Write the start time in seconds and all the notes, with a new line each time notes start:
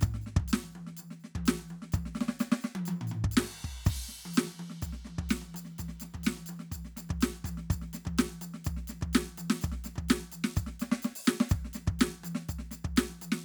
0.01 kick, floor tom, percussion
0.14 snare
0.22 percussion
0.26 snare
0.36 kick, high tom
0.48 percussion
0.53 snare
0.64 high tom
0.70 percussion
0.75 high tom
0.87 snare
0.97 kick, high tom, percussion
1.11 snare
1.20 percussion
1.24 snare
1.35 kick, high tom
1.46 snare, percussion
1.59 high tom
1.68 high tom, percussion
1.82 snare
1.92 kick, high tom, percussion
2.06 snare
2.14 kick, snare, percussion
2.21 snare
2.28 snare
2.40 snare, percussion
2.52 snare
2.61 snare, percussion
2.75 high tom
2.86 high tom, percussion
3.01 floor tom
3.07 percussion
3.12 floor tom
3.24 kick
3.31 percussion
3.37 snare, crash
3.64 kick
3.85 kick, percussion, crash
4.08 snare
4.25 high tom
4.34 snare, percussion
4.47 high tom
4.59 high tom
4.70 snare
4.82 kick, high tom, percussion
4.93 snare
5.05 snare, high tom
5.19 kick, high tom
5.29 snare, percussion
5.42 high tom
5.54 high tom, percussion
5.65 snare
5.70 snare
5.79 kick, high tom, percussion
5.89 snare
6.00 snare, high tom, percussion
6.14 kick, high tom
6.24 snare, percussion
6.37 high tom
6.46 high tom, percussion
6.59 snare
6.72 kick, high tom, percussion
6.85 snare
6.97 snare, high tom, percussion
7.09 kick, high tom
7.21 snare, percussion
7.34 high tom
7.44 kick, high tom, percussion
7.57 snare
7.70 kick, high tom, percussion
7.82 snare
7.93 snare, high tom, percussion
8.05 kick, high tom
8.18 snare, percussion
8.29 high tom
8.41 high tom, percussion
8.54 snare
8.65 kick, high tom, percussion
8.77 snare
8.88 snare, high tom, percussion
9.01 kick, high tom
9.13 snare, percussion
9.26 high tom
9.38 high tom, percussion
9.50 snare
9.62 kick, high tom, percussion
9.72 snare
9.84 snare, high tom, percussion
9.96 kick, high tom
10.09 snare, percussion
10.20 high tom
10.32 high tom, percussion
10.44 snare
10.56 kick, high tom, percussion
10.67 snare
10.80 snare, percussion
10.92 snare
11.02 snare, percussion
11.15 percussion
11.25 snare, percussion
11.40 snare
11.49 kick, percussion
11.54 high tom
11.65 snare
11.73 snare, high tom, percussion
11.87 kick, high tom
11.99 snare, percussion
12.11 high tom
12.24 high tom, percussion
12.35 snare
12.49 kick, high tom, percussion
12.59 snare
12.71 snare, high tom, percussion
12.84 kick, high tom
12.96 snare, percussion
13.09 high tom
13.22 high tom, percussion
13.32 snare